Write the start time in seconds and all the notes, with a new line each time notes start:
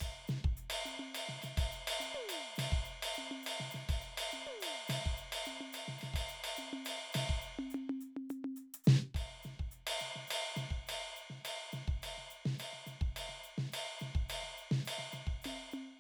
0.01 kick, hi-hat pedal, ride
0.28 snare, hi-hat pedal
0.45 kick
0.57 hi-hat pedal
0.70 ride
0.86 hi-hat pedal, high tom
1.00 high tom
1.15 hi-hat pedal, ride
1.29 snare
1.42 snare, hi-hat pedal, ride
1.58 kick, ride
1.72 hi-hat pedal
1.88 ride
2.01 hi-hat pedal, high tom
2.15 high tom
2.29 hi-hat pedal, ride
2.56 snare, hi-hat pedal, ride
2.72 kick
2.85 hi-hat pedal
3.03 ride
3.15 hi-hat pedal, high tom
3.32 high tom
3.43 hi-hat pedal, ride
3.60 snare
3.71 snare, hi-hat pedal
3.77 ride
3.89 kick, ride
4.02 hi-hat pedal
4.18 ride
4.31 hi-hat pedal, high tom
4.47 high tom
4.61 hi-hat pedal, ride
4.88 snare, hi-hat pedal, ride
5.06 kick
5.17 hi-hat pedal
5.33 ride
5.45 hi-hat pedal, high tom
5.61 high tom
5.73 hi-hat pedal, ride
5.88 snare
5.98 hi-hat pedal, ride
6.03 snare
6.14 kick, ride
6.29 hi-hat pedal
6.44 ride
6.57 hi-hat pedal, high tom
6.73 high tom
6.85 hi-hat pedal, ride
7.13 snare, hi-hat pedal, ride
7.30 kick
7.42 hi-hat pedal
7.59 high tom
7.71 hi-hat pedal
7.75 high tom
7.90 high tom
8.01 hi-hat pedal
8.17 high tom
8.30 hi-hat pedal, high tom
8.45 high tom
8.57 hi-hat pedal
8.74 open hi-hat
8.84 snare, hi-hat pedal
9.15 kick, ride
9.43 snare, hi-hat pedal
9.60 kick
9.72 hi-hat pedal
9.87 ride
10.00 snare, hi-hat pedal
10.16 snare
10.28 hi-hat pedal, ride
10.56 snare, hi-hat pedal
10.71 kick, snare
10.87 hi-hat pedal, ride
11.17 hi-hat pedal
11.30 snare
11.45 hi-hat pedal, ride
11.72 snare, hi-hat pedal
11.88 kick
12.02 hi-hat pedal, ride
12.18 snare
12.31 hi-hat pedal
12.46 snare
12.59 hi-hat pedal, ride
12.73 snare
12.87 snare, hi-hat pedal
13.02 kick
13.17 hi-hat pedal, ride
13.29 snare
13.44 hi-hat pedal
13.58 snare
13.72 hi-hat pedal, ride
14.00 snare, hi-hat pedal
14.15 kick
14.29 hi-hat pedal, ride
14.44 snare
14.58 hi-hat pedal
14.72 snare
14.85 hi-hat pedal, ride
14.99 snare
15.12 snare, hi-hat pedal
15.27 kick
15.42 hi-hat pedal, ride
15.46 high tom
15.72 hi-hat pedal, high tom